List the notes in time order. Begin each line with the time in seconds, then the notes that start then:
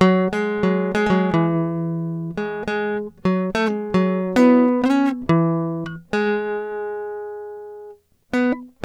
0.02 F#3
0.34 G#3
0.65 F#3
0.96 G#3
1.12 F#3
1.35 E3
2.39 G#3
2.69 G#3
3.26 F#3
3.56 A3
3.69 G#3
3.95 F#3
4.37 B3
4.85 C#4
5.30 E3
6.14 G#3
8.35 B3